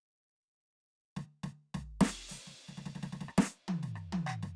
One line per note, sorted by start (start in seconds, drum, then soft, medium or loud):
1.17 snare soft
1.17 floor tom soft
1.44 snare soft
1.44 floor tom soft
1.75 snare medium
1.75 floor tom medium
2.01 snare loud
2.01 ride loud
2.29 snare soft
2.29 hi-hat pedal medium
2.47 snare soft
2.69 snare soft
2.78 snare soft
2.86 snare soft
2.95 snare soft
3.03 snare soft
3.13 snare soft
3.21 snare soft
3.29 cross-stick medium
3.38 snare loud
3.68 high tom loud
3.83 snare soft
3.96 cross-stick medium
4.13 high tom loud
4.27 percussion loud
4.43 snare soft